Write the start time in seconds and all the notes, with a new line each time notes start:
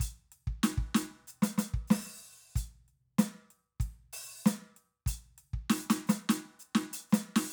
0.01 closed hi-hat, kick
0.33 closed hi-hat
0.48 kick
0.64 closed hi-hat, snare
0.79 kick
0.96 open hi-hat, snare
1.28 hi-hat pedal
1.43 closed hi-hat, snare
1.59 closed hi-hat, snare
1.75 kick
1.88 open hi-hat, snare, hi-hat pedal
2.57 closed hi-hat, kick, hi-hat pedal
2.89 closed hi-hat
3.19 closed hi-hat, snare
3.51 closed hi-hat
3.81 kick, closed hi-hat
4.14 open hi-hat
4.46 closed hi-hat, snare, hi-hat pedal
4.77 closed hi-hat
5.07 closed hi-hat, kick
5.39 closed hi-hat
5.54 kick
5.71 open hi-hat, snare
5.81 hi-hat pedal
5.91 closed hi-hat, snare
6.08 closed hi-hat, snare, hi-hat pedal
6.30 closed hi-hat, snare
6.60 hi-hat pedal
6.76 snare
6.94 closed hi-hat
7.10 snare, hi-hat pedal
7.15 closed hi-hat
7.37 open hi-hat, snare